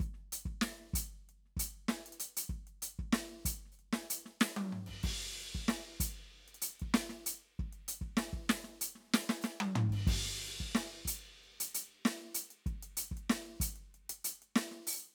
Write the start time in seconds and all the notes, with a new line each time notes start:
0.03 kick, closed hi-hat, hi-hat pedal
0.14 snare
0.32 closed hi-hat
0.45 kick
0.61 snare
0.94 closed hi-hat, kick
1.29 closed hi-hat
1.45 snare
1.57 closed hi-hat, kick
1.88 snare
2.06 closed hi-hat
2.12 closed hi-hat
2.20 closed hi-hat
2.37 closed hi-hat
2.49 kick, closed hi-hat
2.67 closed hi-hat
2.82 closed hi-hat
2.99 kick
3.13 snare
3.45 closed hi-hat, kick
3.65 snare
3.72 hi-hat pedal
3.79 closed hi-hat
3.93 snare
4.10 closed hi-hat
4.26 snare
4.40 snare, hi-hat pedal
4.56 high tom
4.72 floor tom
4.86 kick, crash
5.03 kick, ride
5.39 closed hi-hat
5.55 kick
5.68 snare
6.00 closed hi-hat, kick
6.48 closed hi-hat
6.54 closed hi-hat
6.62 closed hi-hat
6.79 kick, closed hi-hat
6.94 snare
7.09 snare
7.26 closed hi-hat
7.44 closed hi-hat
7.58 kick, closed hi-hat
7.73 closed hi-hat
7.88 closed hi-hat
8.01 kick
8.17 snare
8.33 kick
8.49 snare
8.64 snare
8.81 closed hi-hat
8.95 snare
9.00 snare
9.04 snare
9.08 snare
9.11 snare
9.14 snare
9.29 snare
9.41 snare, hi-hat pedal
9.60 high tom
9.75 floor tom
9.89 kick, crash
10.07 kick, ride
10.25 snare
10.47 closed hi-hat
10.60 kick
10.75 snare
11.05 closed hi-hat, kick
11.24 closed hi-hat
11.43 closed hi-hat
11.60 closed hi-hat
11.74 closed hi-hat
12.05 snare, crash
12.34 closed hi-hat
12.50 closed hi-hat
12.66 kick, closed hi-hat
12.83 closed hi-hat
12.97 closed hi-hat
13.11 kick
13.17 closed hi-hat
13.29 snare
13.60 closed hi-hat, kick
13.76 closed hi-hat
13.94 closed hi-hat
14.09 closed hi-hat
14.24 closed hi-hat
14.42 closed hi-hat
14.56 snare
14.71 snare
14.87 open hi-hat